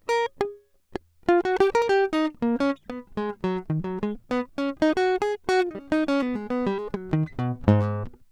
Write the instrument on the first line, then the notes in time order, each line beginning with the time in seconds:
acoustic guitar
0.11 A#4
1.30 F4
1.47 F#4
1.62 G4
1.77 A#4
1.91 G4
2.15 D#4
2.44 A#3
2.62 C#4
2.91 B3
3.19 G#3
3.46 F#3
3.71 D#3
3.86 F#3
4.05 G#3
4.33 B3
4.60 C#4
4.84 D#4
4.99 F#4
5.23 G#4
5.50 F#4
5.62 F4
5.72 D#4
5.94 D#4
6.10 C#4
6.22 B3
6.38 G#3
6.52 B3
6.68 G3
6.80 G#3
6.96 F#3
7.15 D#3
7.41 B2
7.70 G#2